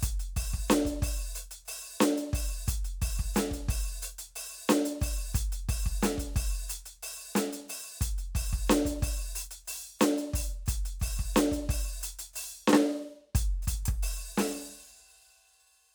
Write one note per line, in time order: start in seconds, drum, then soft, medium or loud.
0.01 closed hi-hat loud
0.01 kick medium
0.01 hi-hat pedal medium
0.20 closed hi-hat medium
0.37 open hi-hat loud
0.37 kick medium
0.54 kick medium
0.68 closed hi-hat loud
0.68 snare loud
0.68 hi-hat pedal medium
0.85 closed hi-hat medium
0.85 kick soft
1.03 open hi-hat loud
1.03 kick medium
1.35 open hi-hat loud
1.35 hi-hat pedal medium
1.51 closed hi-hat medium
1.66 open hi-hat loud
1.66 hi-hat pedal soft
2.00 closed hi-hat loud
2.00 snare loud
2.00 hi-hat pedal medium
2.18 closed hi-hat medium
2.33 open hi-hat loud
2.33 kick medium
2.67 closed hi-hat loud
2.67 kick medium
2.67 hi-hat pedal medium
2.85 closed hi-hat medium
3.02 open hi-hat loud
3.02 kick medium
3.19 kick medium
3.34 closed hi-hat loud
3.34 snare loud
3.34 hi-hat pedal medium
3.51 closed hi-hat medium
3.51 kick soft
3.69 open hi-hat loud
3.69 kick medium
4.02 open hi-hat loud
4.02 hi-hat pedal medium
4.19 closed hi-hat loud
4.36 open hi-hat loud
4.68 closed hi-hat loud
4.68 snare loud
4.68 hi-hat pedal medium
4.85 closed hi-hat medium
5.01 open hi-hat loud
5.01 kick medium
5.01 hi-hat pedal soft
5.34 closed hi-hat loud
5.34 kick medium
5.34 hi-hat pedal medium
5.53 closed hi-hat medium
5.69 open hi-hat loud
5.69 kick medium
5.86 kick medium
6.02 closed hi-hat loud
6.02 snare loud
6.02 hi-hat pedal medium
6.18 closed hi-hat medium
6.18 kick medium
6.33 open hi-hat loud
6.33 kick medium
6.33 hi-hat pedal soft
6.69 closed hi-hat loud
6.69 hi-hat pedal medium
6.86 closed hi-hat medium
7.03 open hi-hat loud
7.34 closed hi-hat loud
7.34 snare loud
7.34 hi-hat pedal soft
7.53 closed hi-hat medium
7.69 open hi-hat loud
7.69 hi-hat pedal soft
8.01 closed hi-hat loud
8.01 kick medium
8.01 hi-hat pedal medium
8.18 closed hi-hat medium
8.35 open hi-hat loud
8.35 kick medium
8.53 kick medium
8.67 closed hi-hat loud
8.67 snare loud
8.67 hi-hat pedal medium
8.86 closed hi-hat medium
8.86 kick medium
8.99 hi-hat pedal soft
9.03 open hi-hat loud
9.03 kick medium
9.36 open hi-hat loud
9.36 hi-hat pedal medium
9.51 closed hi-hat medium
9.65 open hi-hat loud
9.65 hi-hat pedal soft
9.99 closed hi-hat loud
9.99 snare loud
9.99 hi-hat pedal medium
10.18 closed hi-hat medium
10.33 open hi-hat loud
10.33 kick medium
10.33 hi-hat pedal soft
10.66 closed hi-hat loud
10.66 kick medium
10.66 hi-hat pedal medium
10.86 closed hi-hat medium
11.00 open hi-hat loud
11.00 kick medium
11.00 hi-hat pedal soft
11.19 kick medium
11.34 closed hi-hat loud
11.34 snare loud
11.34 hi-hat pedal medium
11.52 closed hi-hat medium
11.52 kick medium
11.65 hi-hat pedal soft
11.69 open hi-hat loud
11.69 kick medium
12.01 closed hi-hat loud
12.01 hi-hat pedal medium
12.19 closed hi-hat loud
12.34 open hi-hat loud
12.34 hi-hat pedal soft
12.68 snare loud
12.68 hi-hat pedal medium
12.73 snare loud
13.35 open hi-hat loud
13.35 kick loud
13.63 hi-hat pedal medium
13.68 closed hi-hat loud
13.68 kick medium
13.86 kick medium
13.86 closed hi-hat loud
14.03 open hi-hat loud
14.38 open hi-hat loud
14.38 snare loud